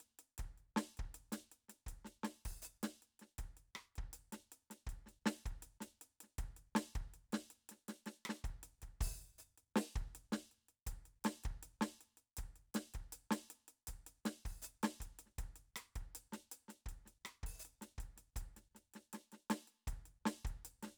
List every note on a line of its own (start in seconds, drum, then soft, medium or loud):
0.01 closed hi-hat soft
0.20 closed hi-hat soft
0.39 kick soft
0.39 closed hi-hat soft
0.58 closed hi-hat soft
0.77 snare medium
0.77 closed hi-hat soft
0.98 kick soft
0.98 closed hi-hat soft
1.15 closed hi-hat soft
1.33 snare soft
1.33 closed hi-hat medium
1.52 closed hi-hat soft
1.69 snare soft
1.69 closed hi-hat soft
1.87 kick soft
1.87 closed hi-hat soft
2.05 snare soft
2.05 closed hi-hat soft
2.24 snare soft
2.24 closed hi-hat soft
2.46 kick soft
2.46 open hi-hat medium
2.63 closed hi-hat soft
2.63 hi-hat pedal medium
2.84 snare medium
2.84 closed hi-hat medium
3.03 closed hi-hat soft
3.20 snare soft
3.20 closed hi-hat soft
3.39 kick soft
3.39 closed hi-hat soft
3.58 closed hi-hat soft
3.76 cross-stick medium
3.76 closed hi-hat soft
3.96 kick soft
3.96 closed hi-hat soft
4.14 closed hi-hat medium
4.33 snare soft
4.33 closed hi-hat soft
4.53 closed hi-hat soft
4.71 snare soft
4.71 closed hi-hat soft
4.87 kick soft
4.87 closed hi-hat soft
5.07 snare soft
5.07 closed hi-hat soft
5.26 snare medium
5.26 closed hi-hat soft
5.46 kick soft
5.46 closed hi-hat soft
5.63 closed hi-hat soft
5.81 snare soft
5.81 closed hi-hat soft
6.02 closed hi-hat soft
6.21 snare soft
6.21 closed hi-hat soft
6.39 kick soft
6.39 closed hi-hat soft
6.57 closed hi-hat soft
6.76 snare medium
6.76 closed hi-hat soft
6.96 kick soft
6.96 closed hi-hat soft
7.14 closed hi-hat soft
7.33 snare medium
7.33 closed hi-hat soft
7.51 closed hi-hat soft
7.70 snare soft
7.70 closed hi-hat soft
7.89 snare soft
7.89 closed hi-hat soft
8.07 snare soft
8.07 closed hi-hat soft
8.26 cross-stick medium
8.26 closed hi-hat soft
8.30 snare soft
8.45 kick soft
8.45 closed hi-hat soft
8.64 closed hi-hat soft
8.83 kick soft
8.83 closed hi-hat soft
9.01 open hi-hat medium
9.01 kick medium
9.39 closed hi-hat soft
9.39 hi-hat pedal soft
9.58 closed hi-hat soft
9.76 snare medium
9.76 closed hi-hat soft
9.96 kick soft
9.96 closed hi-hat soft
10.16 closed hi-hat soft
10.33 snare medium
10.33 closed hi-hat soft
10.52 closed hi-hat soft
10.69 closed hi-hat soft
10.87 kick soft
10.87 closed hi-hat medium
11.06 closed hi-hat soft
11.25 snare medium
11.25 closed hi-hat medium
11.44 kick soft
11.44 closed hi-hat soft
11.63 closed hi-hat soft
11.82 snare medium
11.82 closed hi-hat soft
12.01 closed hi-hat soft
12.18 closed hi-hat soft
12.38 kick soft
12.38 closed hi-hat medium
12.56 closed hi-hat soft
12.75 snare medium
12.75 closed hi-hat medium
12.95 kick soft
12.95 closed hi-hat soft
13.13 closed hi-hat medium
13.31 snare medium
13.31 closed hi-hat medium
13.51 closed hi-hat soft
13.69 closed hi-hat soft
13.88 kick soft
13.88 closed hi-hat medium
14.07 closed hi-hat soft
14.26 snare medium
14.26 closed hi-hat soft
14.46 kick soft
14.46 open hi-hat soft
14.63 closed hi-hat soft
14.63 hi-hat pedal medium
14.84 snare medium
14.84 closed hi-hat medium
15.01 kick soft
15.01 closed hi-hat soft
15.20 closed hi-hat soft
15.27 snare soft
15.39 kick soft
15.39 closed hi-hat soft
15.56 closed hi-hat soft
15.77 cross-stick medium
15.77 closed hi-hat medium
15.96 kick soft
15.96 closed hi-hat soft
16.16 closed hi-hat medium
16.33 snare soft
16.33 closed hi-hat soft
16.52 closed hi-hat medium
16.69 snare soft
16.69 closed hi-hat soft
16.87 kick soft
16.87 closed hi-hat soft
17.06 snare soft
17.06 closed hi-hat soft
17.26 cross-stick medium
17.26 closed hi-hat soft
17.44 kick soft
17.44 open hi-hat medium
17.60 hi-hat pedal medium
17.66 closed hi-hat soft
17.82 snare soft
17.82 closed hi-hat soft
17.99 kick soft
17.99 closed hi-hat soft
18.17 snare soft
18.17 closed hi-hat soft
18.37 kick soft
18.37 closed hi-hat medium
18.57 snare soft
18.57 closed hi-hat soft
18.75 snare soft
18.75 closed hi-hat soft
18.94 snare soft
18.94 closed hi-hat soft
19.14 snare soft
19.14 closed hi-hat soft
19.33 snare soft
19.33 closed hi-hat soft
19.51 snare medium
19.51 closed hi-hat medium
19.68 closed hi-hat soft
19.88 kick soft
19.88 closed hi-hat soft
20.06 closed hi-hat soft
20.26 snare medium
20.26 closed hi-hat soft
20.45 kick soft
20.45 closed hi-hat soft
20.65 closed hi-hat medium
20.83 snare soft
20.83 closed hi-hat soft
20.87 snare soft